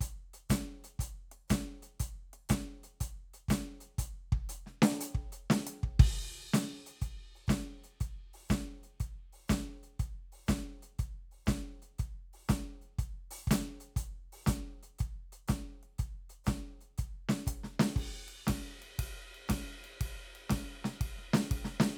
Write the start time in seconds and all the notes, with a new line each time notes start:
0.01 closed hi-hat, kick
0.34 open hi-hat
0.50 open hi-hat, kick, snare, hi-hat pedal
0.84 closed hi-hat
1.00 closed hi-hat, kick
1.32 closed hi-hat
1.48 closed hi-hat, kick, snare, hi-hat pedal
1.83 closed hi-hat
2.00 closed hi-hat, kick
2.34 closed hi-hat
2.49 open hi-hat, kick, snare, hi-hat pedal
2.84 closed hi-hat
3.01 closed hi-hat, kick
3.34 closed hi-hat
3.49 open hi-hat, kick, snare, hi-hat pedal
3.81 closed hi-hat
3.99 closed hi-hat, kick
4.33 kick
4.49 closed hi-hat
4.67 snare
4.82 snare
5.01 closed hi-hat
5.15 kick
5.33 closed hi-hat
5.50 snare
5.67 closed hi-hat
5.84 kick
6.00 kick, crash
6.54 closed hi-hat, snare
6.87 closed hi-hat
7.02 closed hi-hat, kick
7.35 open hi-hat
7.47 closed hi-hat, kick, snare, hi-hat pedal
7.84 closed hi-hat
8.01 closed hi-hat, kick
8.34 open hi-hat
8.49 closed hi-hat, kick, snare, hi-hat pedal
8.84 closed hi-hat
9.00 closed hi-hat, kick
9.33 open hi-hat
9.49 closed hi-hat, kick, snare, hi-hat pedal
9.83 closed hi-hat
10.00 closed hi-hat, kick
10.32 open hi-hat
10.47 closed hi-hat, kick, snare, hi-hat pedal
10.83 closed hi-hat
10.99 closed hi-hat, kick
11.32 open hi-hat
11.46 closed hi-hat, kick, snare, hi-hat pedal
11.82 closed hi-hat
11.99 closed hi-hat, kick
12.33 open hi-hat
12.49 open hi-hat, kick, snare, hi-hat pedal
12.82 closed hi-hat
12.99 closed hi-hat, kick
13.31 open hi-hat
13.48 closed hi-hat, kick, snare, hi-hat pedal
13.81 closed hi-hat
13.97 closed hi-hat, kick
14.33 open hi-hat
14.47 open hi-hat, kick, snare, hi-hat pedal
14.83 closed hi-hat
14.99 closed hi-hat, kick
15.33 open hi-hat
15.48 open hi-hat, kick, snare, hi-hat pedal
15.83 closed hi-hat
15.99 closed hi-hat, kick
16.30 closed hi-hat
16.45 closed hi-hat, kick, snare, hi-hat pedal
16.81 closed hi-hat
16.98 closed hi-hat, kick
17.29 snare
17.46 kick, closed hi-hat, hi-hat pedal
17.64 snare
17.80 snare
17.96 kick, crash
18.29 ride
18.46 kick, snare, hi-hat pedal, ride
18.82 ride
18.99 kick, ride
19.35 ride
19.48 kick, snare, hi-hat pedal, ride
19.85 ride
20.01 kick, ride
20.36 ride
20.50 kick, snare, hi-hat pedal, ride
20.85 snare
21.01 kick, ride
21.18 snare
21.34 snare
21.51 kick, ride
21.65 snare
21.80 snare